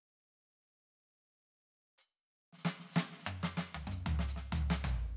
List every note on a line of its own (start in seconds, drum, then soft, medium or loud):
1.98 hi-hat pedal soft
2.52 snare soft
2.57 snare soft
2.57 hi-hat pedal medium
2.61 snare soft
2.65 snare loud
2.79 snare soft
2.84 snare soft
2.87 snare soft
2.91 snare soft
2.91 hi-hat pedal medium
2.96 snare loud
3.12 snare soft
3.17 snare soft
3.21 snare soft
3.21 hi-hat pedal loud
3.26 high tom medium
3.43 snare medium
3.57 snare medium
3.57 hi-hat pedal medium
3.74 mid tom medium
3.87 hi-hat pedal loud
3.87 open hi-hat soft
3.87 high tom loud
4.06 mid tom loud
4.19 snare medium
4.28 hi-hat pedal loud
4.36 snare soft
4.52 hi-hat pedal loud
4.52 mid tom loud
4.70 snare loud
4.84 floor tom loud
4.84 hi-hat pedal loud